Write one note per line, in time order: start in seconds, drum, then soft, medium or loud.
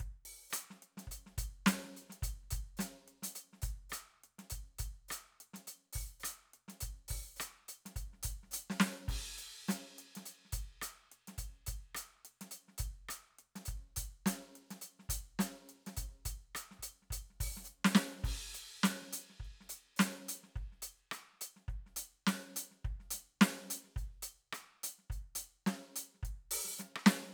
0.00 kick soft
0.00 closed hi-hat soft
0.25 open hi-hat medium
0.50 closed hi-hat loud
0.50 cross-stick medium
0.50 hi-hat pedal medium
0.70 snare soft
0.82 closed hi-hat soft
0.97 snare soft
0.97 closed hi-hat medium
1.07 kick soft
1.11 closed hi-hat medium
1.26 snare soft
1.38 closed hi-hat medium
1.38 kick soft
1.66 closed hi-hat medium
1.66 snare loud
1.66 hi-hat pedal medium
1.84 snare soft
1.96 closed hi-hat soft
2.09 snare soft
2.09 closed hi-hat medium
2.22 closed hi-hat medium
2.22 kick soft
2.43 snare soft
2.50 closed hi-hat medium
2.50 kick soft
2.77 closed hi-hat medium
2.77 snare medium
2.77 hi-hat pedal medium
3.08 closed hi-hat soft
3.22 closed hi-hat medium
3.22 snare soft
3.35 closed hi-hat medium
3.53 snare soft
3.62 open hi-hat medium
3.62 kick soft
3.89 closed hi-hat medium
3.89 cross-stick medium
3.89 hi-hat pedal medium
4.23 closed hi-hat soft
4.38 snare soft
4.38 closed hi-hat soft
4.50 closed hi-hat medium
4.50 kick soft
4.78 closed hi-hat medium
4.78 kick soft
5.08 closed hi-hat medium
5.08 cross-stick medium
5.08 hi-hat pedal medium
5.40 closed hi-hat medium
5.53 snare soft
5.53 closed hi-hat medium
5.67 closed hi-hat medium
5.93 open hi-hat medium
5.93 kick soft
6.20 cross-stick medium
6.20 hi-hat pedal medium
6.24 closed hi-hat loud
6.53 closed hi-hat soft
6.68 snare soft
6.68 closed hi-hat medium
6.80 closed hi-hat medium
6.80 kick soft
7.08 open hi-hat medium
7.08 kick soft
7.36 cross-stick medium
7.36 hi-hat pedal medium
7.40 closed hi-hat medium
7.68 closed hi-hat medium
7.85 snare soft
7.85 closed hi-hat medium
7.96 closed hi-hat medium
7.96 kick soft
8.13 snare soft
8.23 closed hi-hat medium
8.23 kick soft
8.43 snare soft
8.51 closed hi-hat loud
8.51 hi-hat pedal medium
8.70 snare medium
8.80 snare loud
9.08 kick soft
9.08 crash medium
9.38 closed hi-hat medium
9.68 closed hi-hat medium
9.68 snare medium
9.68 hi-hat pedal medium
9.98 closed hi-hat medium
10.15 snare soft
10.15 closed hi-hat medium
10.25 closed hi-hat medium
10.45 snare soft
10.52 closed hi-hat medium
10.52 kick soft
10.81 closed hi-hat medium
10.81 cross-stick medium
11.11 closed hi-hat soft
11.27 snare soft
11.27 closed hi-hat medium
11.38 closed hi-hat medium
11.38 kick soft
11.66 closed hi-hat medium
11.66 kick soft
11.95 closed hi-hat medium
11.95 cross-stick medium
12.25 closed hi-hat medium
12.41 snare soft
12.41 closed hi-hat medium
12.51 closed hi-hat medium
12.68 snare soft
12.78 closed hi-hat medium
12.78 kick soft
13.09 closed hi-hat medium
13.09 cross-stick medium
13.38 closed hi-hat soft
13.55 snare soft
13.55 closed hi-hat medium
13.65 closed hi-hat medium
13.65 kick soft
13.96 closed hi-hat medium
13.96 kick soft
14.26 closed hi-hat medium
14.26 snare medium
14.55 closed hi-hat soft
14.70 snare soft
14.70 closed hi-hat medium
14.81 closed hi-hat medium
14.99 snare soft
15.09 closed hi-hat loud
15.09 kick soft
15.39 closed hi-hat medium
15.39 snare medium
15.69 closed hi-hat medium
15.86 snare soft
15.86 closed hi-hat medium
15.97 closed hi-hat medium
15.97 kick soft
16.25 closed hi-hat medium
16.25 kick soft
16.55 closed hi-hat medium
16.55 cross-stick medium
16.71 snare soft
16.79 closed hi-hat medium
16.79 kick soft
17.02 snare soft
17.10 closed hi-hat medium
17.10 kick soft
17.30 snare soft
17.40 open hi-hat medium
17.40 kick soft
17.56 snare soft
17.64 hi-hat pedal medium
17.84 snare loud
17.95 snare loud
18.14 snare soft
18.24 kick soft
18.24 crash medium
18.54 closed hi-hat medium
18.83 closed hi-hat medium
18.83 snare loud
19.02 snare soft
19.13 closed hi-hat medium
19.30 snare soft
19.40 kick soft
19.45 closed hi-hat soft
19.60 snare soft
19.69 open hi-hat medium
19.96 closed hi-hat medium
19.96 snare loud
19.96 hi-hat pedal medium
20.18 snare soft
20.28 closed hi-hat medium
20.43 snare soft
20.55 kick soft
20.55 closed hi-hat soft
20.72 snare soft
20.82 closed hi-hat medium
21.11 closed hi-hat medium
21.11 cross-stick medium
21.33 snare soft
21.41 closed hi-hat medium
21.56 snare soft
21.68 kick soft
21.68 closed hi-hat soft
21.86 snare soft
21.96 closed hi-hat loud
22.27 closed hi-hat soft
22.27 snare medium
22.56 closed hi-hat loud
22.71 snare soft
22.84 kick soft
22.84 closed hi-hat soft
23.00 snare soft
23.10 closed hi-hat loud
23.10 snare soft
23.41 closed hi-hat soft
23.41 snare loud
23.70 closed hi-hat loud
23.84 snare soft
23.96 closed hi-hat soft
23.96 kick soft
24.22 closed hi-hat medium
24.53 closed hi-hat medium
24.53 cross-stick medium
24.83 closed hi-hat loud
24.98 snare soft
25.10 closed hi-hat soft
25.10 kick soft
25.35 closed hi-hat loud
25.66 snare medium
25.66 closed hi-hat medium
25.96 closed hi-hat loud
26.14 snare soft
26.23 kick soft
26.23 closed hi-hat medium
26.51 open hi-hat loud
26.64 snare soft
26.69 snare soft
26.73 snare soft
26.78 snare soft
26.78 hi-hat pedal medium
26.96 cross-stick medium
27.06 snare loud
27.22 snare soft